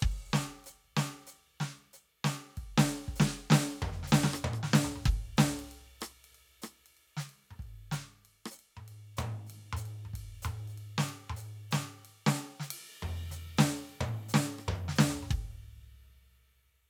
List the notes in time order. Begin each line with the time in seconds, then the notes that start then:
0.01 kick, ride
0.32 snare, hi-hat pedal
0.65 hi-hat pedal, ride
0.97 snare, ride
1.27 hi-hat pedal, ride
1.61 snare, ride
1.94 hi-hat pedal
2.25 snare, ride
2.58 kick, ride
2.78 snare
2.88 hi-hat pedal, ride
3.08 kick
3.16 hi-hat pedal
3.20 snare
3.51 snare
3.53 snare
3.83 kick, mid tom
3.93 snare
4.03 snare
4.08 hi-hat pedal
4.13 snare
4.24 snare
4.34 cross-stick, hi-hat pedal
4.45 high tom
4.54 cross-stick
4.63 snare
4.74 snare
4.85 floor tom
4.96 high tom
5.06 kick, ride
5.38 snare, hi-hat pedal, ride
5.60 ride
5.72 ride
6.01 cross-stick, hi-hat pedal, ride
6.25 ride
6.35 ride
6.62 cross-stick, hi-hat pedal, ride
6.86 ride
6.97 ride
7.17 snare, hi-hat pedal
7.30 ride
7.51 high tom
7.60 kick, ride
7.92 snare, hi-hat pedal
8.26 ride
8.46 cross-stick
8.51 hi-hat pedal
8.60 ride
8.77 high tom
8.88 ride
9.17 hi-hat pedal, high tom, ride
9.47 hi-hat pedal, ride
9.73 hi-hat pedal, high tom
9.86 ride
10.06 mid tom
10.14 kick, ride
10.43 hi-hat pedal, high tom, ride
10.68 hi-hat pedal, ride
10.78 ride
10.98 snare, hi-hat pedal
11.09 ride
11.30 high tom
11.37 hi-hat pedal
11.41 ride
11.72 snare, hi-hat pedal, ride
12.05 ride
12.27 snare, hi-hat pedal
12.39 ride
12.60 snare, hi-hat pedal
12.71 ride
12.92 cross-stick
13.03 mid tom
13.31 snare, hi-hat pedal
13.58 snare, hi-hat pedal
14.01 high tom
14.29 hi-hat pedal
14.34 snare
14.59 cross-stick
14.69 mid tom
14.76 cross-stick
14.89 snare
14.96 snare, hi-hat pedal
15.10 kick, floor tom
15.23 high tom
15.31 kick, ride